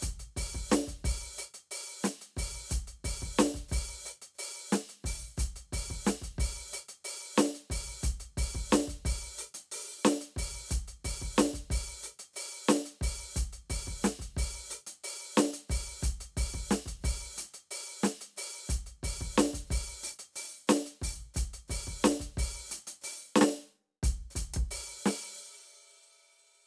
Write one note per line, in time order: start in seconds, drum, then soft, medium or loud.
0.01 closed hi-hat loud
0.01 kick medium
0.01 hi-hat pedal medium
0.19 closed hi-hat medium
0.37 open hi-hat loud
0.37 kick medium
0.55 kick medium
0.69 closed hi-hat loud
0.69 snare loud
0.69 hi-hat pedal medium
0.87 closed hi-hat medium
0.87 kick soft
1.04 open hi-hat loud
1.04 kick medium
1.38 open hi-hat loud
1.38 hi-hat pedal medium
1.54 closed hi-hat medium
1.71 open hi-hat loud
2.03 closed hi-hat loud
2.03 snare loud
2.03 hi-hat pedal medium
2.21 closed hi-hat medium
2.36 open hi-hat loud
2.36 kick medium
2.36 hi-hat pedal soft
2.69 closed hi-hat loud
2.69 kick medium
2.69 hi-hat pedal medium
2.87 closed hi-hat medium
3.04 open hi-hat loud
3.04 kick medium
3.22 kick medium
3.38 closed hi-hat loud
3.38 snare loud
3.38 hi-hat pedal medium
3.54 closed hi-hat medium
3.54 kick medium
3.68 open hi-hat loud
3.68 kick medium
3.68 hi-hat pedal medium
4.05 open hi-hat loud
4.05 hi-hat pedal medium
4.22 closed hi-hat medium
4.34 hi-hat pedal soft
4.38 open hi-hat loud
4.71 closed hi-hat loud
4.71 snare loud
4.71 hi-hat pedal medium
4.89 closed hi-hat medium
5.03 open hi-hat loud
5.03 kick medium
5.03 hi-hat pedal soft
5.37 closed hi-hat loud
5.37 kick medium
5.37 hi-hat pedal medium
5.56 closed hi-hat medium
5.73 open hi-hat loud
5.73 kick medium
5.90 kick medium
6.05 closed hi-hat loud
6.05 snare loud
6.05 hi-hat pedal medium
6.22 closed hi-hat medium
6.22 kick medium
6.38 open hi-hat loud
6.38 kick medium
6.73 open hi-hat loud
6.73 hi-hat pedal medium
6.88 closed hi-hat medium
7.04 open hi-hat loud
7.36 closed hi-hat loud
7.36 snare loud
7.36 hi-hat pedal medium
7.55 closed hi-hat medium
7.70 open hi-hat loud
7.70 kick medium
8.02 closed hi-hat loud
8.02 kick medium
8.02 hi-hat pedal medium
8.20 closed hi-hat medium
8.37 open hi-hat loud
8.37 kick medium
8.55 kick medium
8.70 closed hi-hat loud
8.70 snare loud
8.70 hi-hat pedal medium
8.87 closed hi-hat medium
8.87 kick medium
9.05 open hi-hat loud
9.05 kick medium
9.38 open hi-hat loud
9.38 hi-hat pedal medium
9.54 closed hi-hat loud
9.72 open hi-hat loud
10.04 open hi-hat loud
10.04 snare loud
10.04 hi-hat pedal medium
10.21 closed hi-hat medium
10.36 open hi-hat loud
10.36 kick medium
10.69 closed hi-hat loud
10.69 kick medium
10.69 hi-hat pedal medium
10.88 closed hi-hat medium
11.04 open hi-hat loud
11.04 kick medium
11.22 kick medium
11.36 closed hi-hat loud
11.36 snare loud
11.36 hi-hat pedal medium
11.53 closed hi-hat medium
11.53 kick soft
11.70 open hi-hat loud
11.70 kick medium
12.03 open hi-hat loud
12.03 hi-hat pedal medium
12.19 closed hi-hat medium
12.33 open hi-hat loud
12.33 hi-hat pedal soft
12.68 closed hi-hat loud
12.68 snare loud
12.68 hi-hat pedal medium
12.85 closed hi-hat medium
13.01 open hi-hat loud
13.01 kick medium
13.35 closed hi-hat loud
13.35 kick medium
13.35 hi-hat pedal medium
13.53 closed hi-hat medium
13.70 open hi-hat loud
13.70 kick medium
13.87 kick medium
14.02 closed hi-hat loud
14.02 snare loud
14.02 hi-hat pedal medium
14.19 closed hi-hat medium
14.19 kick soft
14.37 open hi-hat loud
14.37 kick medium
14.70 open hi-hat loud
14.70 hi-hat pedal medium
14.87 closed hi-hat loud
15.04 open hi-hat loud
15.36 closed hi-hat loud
15.36 snare loud
15.36 hi-hat pedal medium
15.53 closed hi-hat medium
15.69 open hi-hat loud
15.69 kick medium
15.69 hi-hat pedal soft
16.02 closed hi-hat loud
16.02 kick medium
16.02 hi-hat pedal medium
16.20 closed hi-hat medium
16.37 open hi-hat loud
16.37 kick medium
16.54 kick medium
16.70 closed hi-hat loud
16.70 snare loud
16.70 hi-hat pedal medium
16.86 closed hi-hat medium
16.86 kick medium
17.01 open hi-hat loud
17.01 kick medium
17.01 hi-hat pedal soft
17.37 closed hi-hat loud
17.37 hi-hat pedal medium
17.54 closed hi-hat medium
17.71 open hi-hat loud
18.02 closed hi-hat loud
18.02 snare loud
18.02 hi-hat pedal soft
18.21 closed hi-hat medium
18.36 open hi-hat loud
18.36 hi-hat pedal soft
18.69 closed hi-hat loud
18.69 kick medium
18.69 hi-hat pedal medium
18.86 closed hi-hat medium
19.03 open hi-hat loud
19.03 kick medium
19.21 kick medium
19.35 closed hi-hat loud
19.35 snare loud
19.35 hi-hat pedal medium
19.53 closed hi-hat medium
19.53 kick medium
19.66 hi-hat pedal soft
19.70 open hi-hat loud
19.70 kick medium
20.03 open hi-hat loud
20.03 hi-hat pedal medium
20.19 closed hi-hat medium
20.33 open hi-hat loud
20.33 hi-hat pedal soft
20.67 closed hi-hat loud
20.67 snare loud
20.67 hi-hat pedal medium
20.86 closed hi-hat medium
21.01 open hi-hat loud
21.01 kick medium
21.01 hi-hat pedal soft
21.34 closed hi-hat loud
21.34 kick medium
21.34 hi-hat pedal medium
21.53 closed hi-hat medium
21.68 open hi-hat loud
21.68 kick medium
21.68 hi-hat pedal soft
21.87 kick medium
22.02 closed hi-hat loud
22.02 snare loud
22.02 hi-hat pedal medium
22.20 closed hi-hat medium
22.20 kick medium
22.33 hi-hat pedal soft
22.37 open hi-hat loud
22.37 kick medium
22.69 closed hi-hat loud
22.69 hi-hat pedal medium
22.87 closed hi-hat loud
23.01 open hi-hat loud
23.01 hi-hat pedal soft
23.36 snare loud
23.36 hi-hat pedal medium
23.41 snare loud
24.03 open hi-hat loud
24.03 kick loud
24.30 hi-hat pedal medium
24.35 closed hi-hat loud
24.35 kick medium
24.54 kick medium
24.54 closed hi-hat loud
24.71 open hi-hat loud
25.06 open hi-hat loud
25.06 snare loud